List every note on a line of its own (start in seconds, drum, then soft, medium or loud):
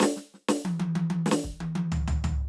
0.00 snare loud
0.03 snare loud
0.16 snare medium
0.34 snare soft
0.49 snare loud
0.65 high tom loud
0.80 high tom loud
0.95 high tom loud
1.10 high tom loud
1.26 snare loud
1.31 snare loud
1.44 kick medium
1.60 high tom loud
1.75 high tom loud
1.92 floor tom loud
2.08 floor tom loud
2.24 floor tom loud